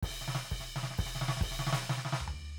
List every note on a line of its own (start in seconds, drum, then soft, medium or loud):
0.03 kick medium
0.03 crash loud
0.11 snare soft
0.21 snare medium
0.28 snare medium
0.35 snare medium
0.44 snare soft
0.50 kick medium
0.50 crash medium
0.60 snare medium
0.76 snare medium
0.83 snare medium
0.91 snare medium
0.98 kick medium
0.98 hi-hat pedal soft
0.98 crash loud
1.06 snare medium
1.15 snare medium
1.21 snare medium
1.28 snare loud
1.36 snare medium
1.41 kick medium
1.41 crash loud
1.51 snare medium
1.59 snare medium
1.67 snare loud
1.73 snare loud
1.80 snare medium
1.80 hi-hat pedal soft
1.90 snare loud
1.97 snare medium
2.05 snare medium
2.12 snare loud
2.20 floor tom medium
2.28 floor tom loud